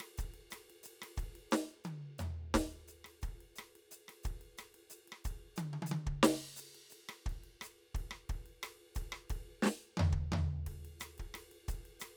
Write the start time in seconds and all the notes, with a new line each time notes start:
0.01 cross-stick, ride
0.18 kick, hi-hat pedal, ride
0.35 ride
0.51 cross-stick, hi-hat pedal, ride
0.71 ride
0.84 hi-hat pedal, ride
1.03 cross-stick, ride
1.17 kick, hi-hat pedal, ride
1.36 ride
1.52 snare, hi-hat pedal
1.85 hi-hat pedal, high tom
2.19 floor tom, hi-hat pedal
2.55 kick, snare, ride
2.88 hi-hat pedal, ride
3.05 cross-stick, ride
3.22 kick, hi-hat pedal, ride
3.41 ride
3.56 cross-stick, hi-hat pedal, ride
3.76 ride
3.92 hi-hat pedal, ride
4.09 cross-stick, ride
4.24 kick, hi-hat pedal, ride
4.42 ride
4.58 cross-stick, hi-hat pedal, ride
4.75 ride
4.91 hi-hat pedal, ride
5.08 ride
5.13 cross-stick
5.25 kick, hi-hat pedal, ride
5.57 hi-hat pedal, high tom
5.74 high tom
5.83 high tom
5.87 hi-hat pedal
5.92 high tom
6.07 kick
6.24 snare, crash
6.57 hi-hat pedal, ride
6.75 ride
6.90 hi-hat pedal, ride
7.10 cross-stick, ride
7.27 kick, ride
7.44 ride
7.62 cross-stick, hi-hat pedal, ride
7.95 kick, ride
8.12 cross-stick
8.30 kick, ride
8.47 ride
8.64 cross-stick, hi-hat pedal, ride
8.96 kick, hi-hat pedal, ride
9.13 cross-stick
9.30 kick, hi-hat pedal, ride
9.63 snare
9.67 snare
9.98 floor tom, high tom
10.13 kick
10.33 floor tom, high tom
10.67 kick, ride
10.85 ride
11.01 cross-stick, hi-hat pedal, ride
11.19 kick, ride
11.35 cross-stick, ride
11.52 ride
11.69 kick, hi-hat pedal, ride
11.86 ride
12.00 cross-stick, hi-hat pedal, ride